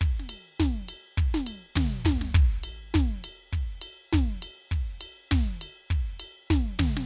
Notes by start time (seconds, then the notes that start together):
0.01 kick, ride
0.20 snare
0.29 ride bell
0.60 kick, snare, hi-hat pedal
0.89 ride bell
1.17 kick, hi-hat pedal, ride
1.34 snare
1.47 kick, ride bell
1.75 kick, snare, hi-hat pedal, mid tom
2.05 kick, snare, floor tom
2.21 snare
2.35 kick
2.59 kick
2.64 ride bell
2.70 kick
2.93 kick, snare, hi-hat pedal
3.24 ride bell
3.53 kick, ride
3.79 kick, ride bell
4.12 kick, snare, hi-hat pedal, ride
4.42 ride bell
4.71 kick, ride
4.99 kick, ride bell
5.31 kick, snare, hi-hat pedal
5.55 kick
5.61 ride bell
5.90 kick, ride
6.13 kick
6.20 ride bell
6.50 kick, snare, hi-hat pedal, ride
6.79 kick, snare, mid tom
6.97 snare